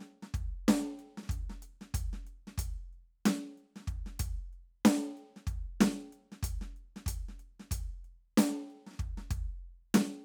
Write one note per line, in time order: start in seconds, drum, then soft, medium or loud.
0.01 snare soft
0.01 closed hi-hat soft
0.23 snare soft
0.34 kick medium
0.34 closed hi-hat medium
0.68 snare loud
0.68 closed hi-hat medium
0.99 snare soft
0.99 closed hi-hat soft
1.18 snare soft
1.23 snare soft
1.28 kick medium
1.28 snare soft
1.28 closed hi-hat medium
1.50 snare soft
1.63 closed hi-hat medium
1.81 snare soft
1.94 kick medium
1.94 closed hi-hat loud
2.13 snare soft
2.24 snare soft
2.24 closed hi-hat soft
2.47 snare soft
2.58 kick medium
2.58 closed hi-hat loud
2.93 closed hi-hat soft
3.26 snare loud
3.26 closed hi-hat loud
3.58 closed hi-hat soft
3.76 snare soft
3.80 snare soft
3.88 kick medium
3.88 closed hi-hat soft
4.06 snare soft
4.20 kick medium
4.20 closed hi-hat loud
4.53 closed hi-hat soft
4.85 snare loud
4.85 closed hi-hat loud
5.17 closed hi-hat soft
5.36 snare soft
5.47 kick medium
5.47 closed hi-hat medium
5.81 snare loud
5.81 closed hi-hat loud
6.13 closed hi-hat soft
6.32 snare soft
6.43 kick medium
6.43 closed hi-hat loud
6.61 snare soft
6.76 closed hi-hat soft
6.96 snare soft
7.06 kick medium
7.06 closed hi-hat loud
7.29 snare soft
7.40 closed hi-hat soft
7.60 snare soft
7.71 kick medium
7.71 closed hi-hat loud
8.05 closed hi-hat soft
8.38 closed hi-hat loud
8.38 snare loud
8.66 snare soft
8.70 closed hi-hat soft
8.87 snare soft
8.91 snare soft
8.94 snare soft
8.99 kick medium
8.99 closed hi-hat soft
9.18 snare soft
9.31 kick medium
9.31 closed hi-hat medium
9.94 snare loud
9.94 closed hi-hat loud